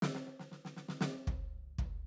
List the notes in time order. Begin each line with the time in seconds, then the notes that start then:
0.02 snare, hi-hat pedal
0.15 snare
0.27 snare
0.40 snare
0.52 snare
0.65 snare
0.77 snare
0.89 snare
1.01 snare
1.27 kick, floor tom
1.78 kick, floor tom